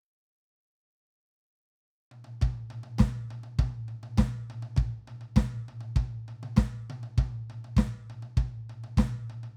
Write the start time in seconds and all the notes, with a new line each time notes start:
2.11 mid tom
2.24 mid tom
2.42 kick, mid tom
2.70 mid tom
2.83 mid tom
2.98 kick, snare, mid tom
3.31 mid tom
3.43 mid tom
3.59 kick, mid tom
3.88 mid tom
4.03 mid tom
4.18 kick, snare, mid tom
4.50 mid tom
4.62 mid tom
4.76 kick, mid tom
5.08 mid tom
5.21 mid tom
5.36 kick, snare, mid tom
5.68 mid tom
5.81 mid tom
5.96 kick, mid tom
6.28 mid tom
6.43 mid tom
6.57 kick, snare, mid tom
6.90 mid tom
7.03 mid tom
7.18 kick, mid tom
7.50 mid tom
7.64 mid tom
7.77 kick, snare, mid tom
8.10 mid tom
8.22 mid tom
8.37 kick, mid tom
8.70 mid tom
8.84 mid tom
8.97 kick, snare, mid tom
9.30 mid tom
9.43 mid tom